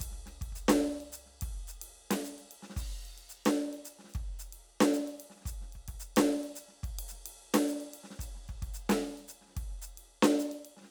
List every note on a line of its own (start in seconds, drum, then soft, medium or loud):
0.01 kick soft
0.01 hi-hat pedal medium
0.01 ride medium
0.11 snare soft
0.26 snare soft
0.26 ride soft
0.42 kick soft
0.42 ride medium
0.53 kick soft
0.53 hi-hat pedal medium
0.69 snare loud
0.69 ride loud
1.01 ride soft
1.13 hi-hat pedal medium
1.13 ride medium
1.26 snare soft
1.42 kick soft
1.42 ride medium
1.55 snare soft
1.68 hi-hat pedal medium
1.68 ride soft
1.82 ride medium
2.11 snare loud
2.11 ride loud
2.25 hi-hat pedal medium
2.39 ride soft
2.52 ride medium
2.63 snare soft
2.70 snare soft
2.75 kick medium
2.75 snare soft
2.75 hi-hat pedal medium
2.75 crash medium
3.06 ride soft
3.18 ride soft
3.30 hi-hat pedal medium
3.46 snare loud
3.46 ride medium
3.74 ride soft
3.85 hi-hat pedal medium
3.85 ride medium
3.99 snare soft
4.05 snare soft
4.09 snare soft
4.09 hi-hat pedal soft
4.15 kick medium
4.15 ride soft
4.40 hi-hat pedal medium
4.40 ride soft
4.53 ride medium
4.81 snare loud
4.81 ride medium
4.94 snare soft
4.94 hi-hat pedal medium
5.01 snare soft
5.08 ride soft
5.18 hi-hat pedal soft
5.18 ride medium
5.30 snare soft
5.36 snare soft
5.41 snare soft
5.46 kick soft
5.46 hi-hat pedal medium
5.46 ride medium
5.62 snare soft
5.73 kick soft
5.73 ride soft
5.88 kick soft
5.88 ride medium
6.00 hi-hat pedal medium
6.17 snare loud
6.17 ride loud
6.44 snare soft
6.44 ride soft
6.56 hi-hat pedal medium
6.56 ride medium
6.69 snare soft
6.84 kick soft
6.84 ride soft
6.99 ride medium
7.09 snare soft
7.09 hi-hat pedal medium
7.26 ride medium
7.55 snare loud
7.55 ride loud
7.69 hi-hat pedal medium
7.81 ride soft
7.93 hi-hat pedal soft
7.93 ride medium
8.04 snare soft
8.11 snare soft
8.20 kick soft
8.20 hi-hat pedal medium
8.20 ride medium
8.36 snare soft
8.49 kick soft
8.49 ride soft
8.63 kick soft
8.63 ride soft
8.74 hi-hat pedal medium
8.90 snare loud
8.90 ride medium
9.10 snare soft
9.18 ride soft
9.29 hi-hat pedal medium
9.29 ride soft
9.42 snare soft
9.46 snare soft
9.49 snare soft
9.52 snare soft
9.57 kick soft
9.57 ride medium
9.70 snare soft
9.74 snare soft
9.82 hi-hat pedal medium
9.86 ride soft
9.98 ride medium
10.23 snare loud
10.23 ride medium
10.40 hi-hat pedal medium
10.52 ride soft
10.65 ride soft
10.77 snare soft
10.81 snare soft
10.84 snare soft